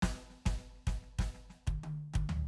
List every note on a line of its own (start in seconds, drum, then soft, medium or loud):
0.02 kick soft
0.02 snare medium
0.15 snare soft
0.30 snare soft
0.46 kick medium
0.46 snare medium
0.58 snare soft
0.74 snare soft
0.87 kick medium
0.87 snare soft
1.02 snare soft
1.19 kick medium
1.19 snare medium
1.34 snare soft
1.50 snare soft
1.67 kick medium
1.67 high tom medium
1.84 high tom medium
2.14 kick medium
2.14 high tom medium
2.29 floor tom loud